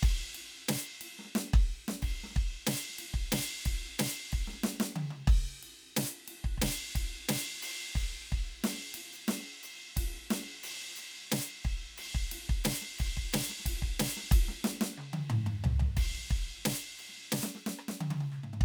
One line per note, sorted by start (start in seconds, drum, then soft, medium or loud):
0.03 kick loud
0.03 ride loud
0.35 ride medium
0.69 snare loud
0.69 ride medium
1.01 ride medium
1.19 snare medium
1.25 snare soft
1.35 snare loud
1.53 kick loud
1.53 crash medium
1.88 snare loud
2.02 kick medium
2.02 ride medium
2.24 snare medium
2.31 snare soft
2.36 kick medium
2.36 ride medium
2.67 snare loud
2.67 ride loud
2.89 snare soft
2.99 ride medium
3.14 kick medium
3.32 snare loud
3.32 ride loud
3.66 kick medium
3.66 ride medium
3.99 snare loud
3.99 ride loud
4.32 kick medium
4.32 ride medium
4.48 snare medium
4.54 snare soft
4.80 snare loud
4.96 high tom loud
5.11 high tom loud
5.28 kick loud
5.28 crash medium
5.63 ride medium
5.97 snare loud
5.97 ride loud
6.28 ride medium
6.44 kick medium
6.58 kick soft
6.62 snare loud
6.62 ride loud
6.95 kick medium
6.95 ride medium
7.29 snare loud
7.29 ride loud
7.63 percussion loud
7.63 ride loud
7.96 kick medium
7.96 hi-hat pedal soft
7.96 crash medium
8.31 kick medium
8.31 ride soft
8.64 snare loud
8.64 ride loud
8.94 ride loud
9.13 hi-hat pedal medium
9.28 snare loud
9.28 ride medium
9.63 hi-hat pedal medium
9.63 ride medium
9.97 kick medium
9.97 ride loud
10.31 snare loud
10.31 ride medium
10.63 percussion medium
10.63 ride loud
10.96 hi-hat pedal medium
10.96 ride medium
11.32 snare loud
11.32 ride medium
11.64 kick medium
11.64 ride medium
11.98 ride loud
12.15 kick medium
12.32 ride loud
12.50 kick medium
12.65 snare loud
12.65 ride loud
12.82 snare soft
12.87 snare soft
12.92 snare soft
12.99 kick medium
12.99 ride medium
13.17 kick medium
13.33 snare loud
13.33 ride loud
13.50 snare soft
13.66 kick medium
13.66 ride loud
13.82 kick medium
14.00 snare loud
14.00 ride loud
14.17 snare medium
14.23 snare soft
14.32 kick loud
14.32 ride loud
14.49 snare medium
14.65 snare loud
14.81 snare loud
14.98 high tom medium
15.13 high tom loud
15.30 mid tom loud
15.47 mid tom loud
15.64 floor tom loud
15.80 floor tom loud
15.97 kick medium
15.97 ride loud
16.30 kick medium
16.30 ride medium
16.66 snare loud
16.66 ride medium
16.99 ride medium
17.09 snare soft
17.14 snare soft
17.18 snare soft
17.21 snare soft
17.24 snare soft
17.32 snare loud
17.32 hi-hat pedal medium
17.43 snare loud
17.55 snare medium
17.67 snare loud
17.79 cross-stick medium
17.89 snare medium
18.01 high tom loud
18.11 high tom loud
18.21 high tom medium
18.32 percussion soft
18.44 mid tom medium
18.53 mid tom medium
18.61 kick loud